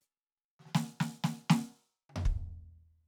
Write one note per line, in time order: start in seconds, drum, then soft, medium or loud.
0.01 hi-hat pedal soft
0.60 snare soft
0.66 snare soft
0.75 snare loud
1.01 snare medium
1.25 snare loud
1.50 snare loud
2.10 high tom soft
2.17 floor tom loud
2.26 kick medium